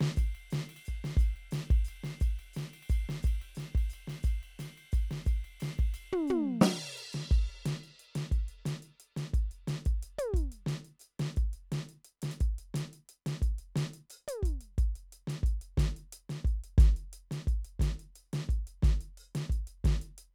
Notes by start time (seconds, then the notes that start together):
0.01 snare, ride
0.17 kick, hi-hat pedal, ride
0.35 ride
0.51 snare, hi-hat pedal, ride
0.69 ride
0.76 ride
0.85 kick, hi-hat pedal, ride
1.04 snare, ride
1.17 kick, hi-hat pedal, ride
1.36 ride
1.51 snare, hi-hat pedal, ride
1.71 kick, ride
1.85 hi-hat pedal, ride
2.04 snare, ride
2.20 kick, hi-hat pedal, ride
2.39 ride
2.54 snare, hi-hat pedal, ride
2.74 ride
2.83 ride
2.89 kick, hi-hat pedal, ride
3.09 snare, ride
3.23 kick, hi-hat pedal
3.27 ride
3.42 ride
3.55 snare, hi-hat pedal
3.60 ride
3.75 kick, ride
3.90 hi-hat pedal, ride
4.08 snare, ride
4.23 kick, hi-hat pedal, ride
4.43 ride
4.59 snare, hi-hat pedal, ride
4.78 ride
4.92 kick, hi-hat pedal, ride
5.11 snare, ride
5.26 kick, hi-hat pedal, ride
5.44 ride
5.60 snare, hi-hat pedal, ride
5.78 kick, ride
5.94 hi-hat pedal, ride
6.12 floor tom
6.28 floor tom, hi-hat pedal
6.61 snare, hi-hat pedal, crash
6.97 closed hi-hat
7.13 snare, closed hi-hat
7.31 kick, closed hi-hat
7.49 closed hi-hat
7.66 snare, closed hi-hat
7.84 closed hi-hat
8.00 closed hi-hat
8.15 snare, closed hi-hat
8.32 kick, closed hi-hat
8.48 closed hi-hat
8.66 snare, closed hi-hat
8.83 closed hi-hat
9.00 closed hi-hat
9.17 snare, closed hi-hat
9.34 kick, closed hi-hat
9.51 closed hi-hat
9.68 snare, closed hi-hat
9.86 kick, closed hi-hat
10.03 closed hi-hat
10.18 closed hi-hat, high tom
10.34 kick, closed hi-hat
10.52 closed hi-hat
10.67 snare, closed hi-hat
10.85 closed hi-hat
11.00 closed hi-hat, hi-hat pedal
11.19 snare, closed hi-hat
11.37 kick, closed hi-hat
11.53 closed hi-hat
11.72 snare, closed hi-hat
11.89 closed hi-hat
12.05 closed hi-hat
12.22 snare, closed hi-hat
12.31 closed hi-hat
12.41 kick, closed hi-hat
12.59 closed hi-hat
12.75 closed hi-hat, snare
12.93 closed hi-hat
13.09 closed hi-hat
13.26 snare, closed hi-hat
13.42 kick, closed hi-hat
13.59 closed hi-hat
13.76 snare, closed hi-hat
13.94 closed hi-hat
14.10 hi-hat pedal, open hi-hat
14.28 closed hi-hat, high tom
14.43 kick, closed hi-hat
14.61 closed hi-hat
14.78 kick, closed hi-hat
14.96 closed hi-hat
15.13 closed hi-hat
15.28 snare, closed hi-hat
15.43 kick, closed hi-hat
15.62 closed hi-hat
15.78 kick, snare, closed hi-hat
15.97 closed hi-hat
16.13 closed hi-hat
16.30 snare, closed hi-hat
16.45 kick, closed hi-hat
16.64 closed hi-hat
16.78 kick, snare, closed hi-hat
16.97 closed hi-hat
17.13 closed hi-hat
17.31 snare, closed hi-hat
17.47 kick, closed hi-hat
17.65 closed hi-hat
17.80 kick, snare, closed hi-hat
18.00 closed hi-hat
18.15 hi-hat pedal, open hi-hat
18.33 snare, closed hi-hat
18.49 kick, closed hi-hat
18.67 closed hi-hat
18.83 kick, snare, closed hi-hat
19.01 closed hi-hat
19.18 hi-hat pedal, open hi-hat
19.35 snare, closed hi-hat
19.50 kick, closed hi-hat
19.67 closed hi-hat
19.85 kick, snare, closed hi-hat
20.02 closed hi-hat
20.18 closed hi-hat